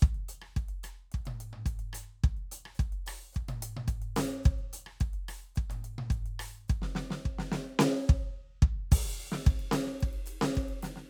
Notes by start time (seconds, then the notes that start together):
0.01 kick, closed hi-hat, hi-hat pedal
0.15 closed hi-hat
0.29 closed hi-hat
0.42 cross-stick
0.57 kick, closed hi-hat
0.69 closed hi-hat
0.84 closed hi-hat, cross-stick
1.12 kick, closed hi-hat
1.26 closed hi-hat, high tom
1.41 kick, closed hi-hat
1.53 high tom
1.66 kick, closed hi-hat
1.79 closed hi-hat
1.93 closed hi-hat, cross-stick
2.24 kick, closed hi-hat
2.37 closed hi-hat
2.52 closed hi-hat
2.66 cross-stick
2.75 hi-hat pedal
2.80 kick, closed hi-hat
2.93 closed hi-hat
3.07 open hi-hat, cross-stick
3.33 kick, closed hi-hat, hi-hat pedal
3.49 closed hi-hat, high tom
3.61 kick, closed hi-hat
3.77 high tom
3.88 kick, closed hi-hat
4.02 closed hi-hat
4.16 open hi-hat, snare
4.44 kick, closed hi-hat, hi-hat pedal
4.59 closed hi-hat
4.73 closed hi-hat
4.87 cross-stick
5.01 kick, closed hi-hat
5.14 closed hi-hat
5.29 open hi-hat, cross-stick
5.55 kick, closed hi-hat, hi-hat pedal
5.70 closed hi-hat, high tom
5.85 closed hi-hat
5.99 high tom
6.11 kick, closed hi-hat
6.26 closed hi-hat
6.40 open hi-hat, cross-stick
6.55 cross-stick
6.68 kick, closed hi-hat, hi-hat pedal
6.82 snare
6.95 snare
7.11 snare
7.26 kick
7.39 snare
7.52 snare
7.79 snare
8.09 kick
8.30 kick
8.63 kick
8.92 open hi-hat, kick, ride
9.22 ride
9.32 snare
9.46 kick, hi-hat pedal, ride
9.60 ride
9.72 snare, ride
9.86 snare
10.01 kick, ride
10.13 ride
10.26 hi-hat pedal, ride
10.42 snare
10.56 kick, ride
10.69 ride
10.83 snare, hi-hat pedal, ride
10.96 snare